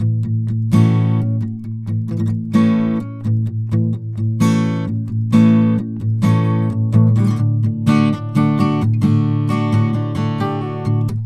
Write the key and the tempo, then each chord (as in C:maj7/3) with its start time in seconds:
A major, 130 BPM
0.00 A:maj6
7.38 D:maj/5